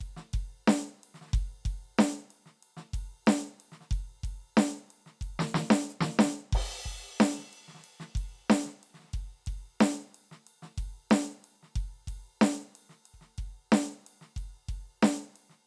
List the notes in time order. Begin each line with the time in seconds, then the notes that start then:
0.01 kick, ride
0.17 snare
0.34 kick, ride
0.68 snare, ride
1.04 ride
1.15 snare
1.22 snare
1.26 snare
1.34 kick, ride
1.66 kick, ride
1.99 snare, ride
2.31 ride
2.46 snare
2.63 ride
2.77 snare
2.94 kick, ride
3.27 snare, ride
3.60 ride
3.72 snare
3.81 snare
3.91 kick, ride
4.24 kick, ride
4.57 snare, ride
4.91 ride
5.07 snare
5.21 kick, ride
5.40 snare
5.55 snare, hi-hat pedal
5.71 snare
5.89 hi-hat pedal
6.01 snare
6.19 snare, hi-hat pedal
6.26 snare
6.47 snare
6.53 kick, crash
6.86 kick, ride
7.21 snare, ride
7.38 snare
7.53 ride
7.68 snare
7.75 snare
7.79 snare
7.84 ride
8.00 snare
8.15 kick, ride
8.50 snare, ride
8.66 snare
8.74 snare
8.83 ride
8.95 snare
8.99 snare
9.03 snare
9.07 snare
9.11 kick, snare, ride
9.15 snare
9.47 kick, ride
9.81 snare, ride
10.15 ride
10.32 snare
10.47 ride
10.63 snare
10.78 kick, ride
11.11 snare, ride
11.31 snare
11.45 ride
11.63 snare
11.76 kick, ride
12.08 kick, ride
12.42 snare, ride
12.59 snare
12.76 ride
12.90 snare
13.06 ride
13.14 kick
13.21 snare
13.38 kick, ride
13.72 snare, ride
14.07 ride
14.22 snare
14.37 kick, ride
14.69 kick, ride
15.03 snare, ride
15.36 ride
15.50 snare